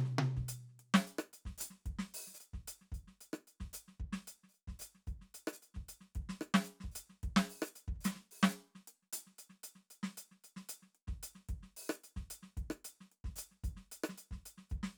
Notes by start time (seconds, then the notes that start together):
0.06 snare
0.19 high tom
0.37 kick, snare
0.49 closed hi-hat
0.70 snare
0.80 closed hi-hat
0.95 snare
1.07 closed hi-hat
1.19 cross-stick
1.34 closed hi-hat
1.46 kick, snare
1.58 closed hi-hat, hi-hat pedal
1.71 snare
1.86 kick, closed hi-hat
1.92 kick
1.99 snare
2.15 open hi-hat
2.28 snare
2.35 hi-hat pedal
2.41 closed hi-hat
2.54 kick, snare
2.59 kick
2.68 closed hi-hat
2.82 snare
2.92 closed hi-hat, kick
3.08 snare
3.21 closed hi-hat
3.34 cross-stick
3.48 closed hi-hat
3.61 kick, snare
3.74 closed hi-hat, hi-hat pedal
3.89 snare
4.00 kick
4.13 snare
4.28 closed hi-hat
4.44 snare
4.50 hi-hat pedal
4.54 closed hi-hat
4.68 kick, snare
4.80 closed hi-hat, hi-hat pedal
4.95 snare
5.07 closed hi-hat, kick
5.22 snare
5.35 open hi-hat
5.48 cross-stick
5.53 hi-hat pedal
5.63 closed hi-hat
5.75 kick, snare
5.82 kick
5.89 closed hi-hat
6.01 snare
6.16 kick, closed hi-hat
6.22 kick
6.30 snare
6.42 cross-stick
6.55 snare
6.65 snare, hi-hat pedal
6.81 kick, snare
6.91 kick, hi-hat pedal
6.96 closed hi-hat
7.10 snare
7.24 kick, closed hi-hat
7.30 kick
7.37 snare
7.50 open hi-hat
7.63 cross-stick, hi-hat pedal
7.76 closed hi-hat
7.88 kick
7.95 kick
8.01 closed hi-hat, hi-hat pedal
8.06 snare
8.16 snare
8.32 open hi-hat
8.44 snare
8.50 hi-hat pedal
8.76 snare
8.88 closed hi-hat
9.03 snare
9.13 closed hi-hat
9.27 snare
9.39 closed hi-hat
9.50 snare
9.64 closed hi-hat
9.76 snare
9.91 closed hi-hat
10.04 snare
10.18 closed hi-hat
10.32 snare
10.45 closed hi-hat
10.57 snare
10.70 closed hi-hat
10.83 snare
10.95 closed hi-hat
11.08 kick, snare
11.24 closed hi-hat
11.36 snare
11.49 kick, closed hi-hat
11.63 snare
11.77 open hi-hat
11.90 cross-stick, hi-hat pedal
12.04 closed hi-hat
12.17 kick, snare
12.31 closed hi-hat
12.43 snare
12.57 kick, closed hi-hat
12.64 kick
12.71 cross-stick
12.85 closed hi-hat
13.01 snare
13.12 closed hi-hat
13.25 kick, snare
13.36 closed hi-hat, hi-hat pedal
13.52 snare
13.64 closed hi-hat, kick
13.71 kick
13.77 snare
13.92 closed hi-hat
14.04 cross-stick
14.10 snare
14.18 closed hi-hat
14.31 kick, snare
14.46 closed hi-hat
14.58 snare
14.70 closed hi-hat, kick
14.78 kick
14.84 snare